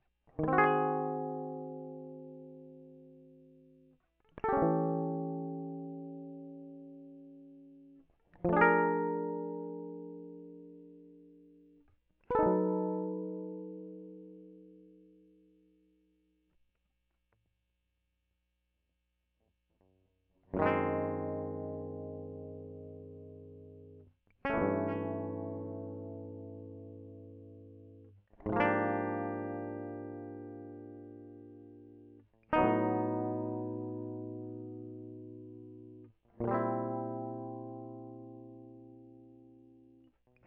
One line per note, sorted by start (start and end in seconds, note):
0.40 3.98 D#3
0.49 3.98 C4
0.53 3.94 F#4
0.59 2.76 G#4
0.64 0.70 D5
4.45 6.64 A4
4.49 8.01 G4
4.53 8.04 C#4
4.59 5.87 A3
4.63 8.04 E3
8.46 11.83 F3
8.51 10.60 A3
8.51 11.88 D4
8.57 11.82 G#4
8.62 11.67 A#4
12.31 15.00 B4
12.36 15.79 A4
12.40 16.52 D#4
12.45 15.90 F#3
12.45 12.50 A3
20.56 24.13 F#2
20.56 20.89 A#2
20.60 24.10 D#3
20.60 24.07 G#3
20.67 24.07 C4
24.46 28.10 C#4
24.51 28.15 A3
24.55 28.13 E3
24.64 28.23 G2
28.48 32.30 G#2
28.48 28.57 B2
28.54 32.23 F3
28.54 32.25 A#3
28.61 32.24 D4
28.66 31.72 G4
32.54 36.11 B3
32.54 36.09 D#4
32.59 32.69 C3
32.59 36.09 F#3
32.66 36.14 A2
36.42 40.11 A#2
36.42 36.80 D3
36.49 39.98 G3
36.49 40.12 C4
36.55 40.09 E4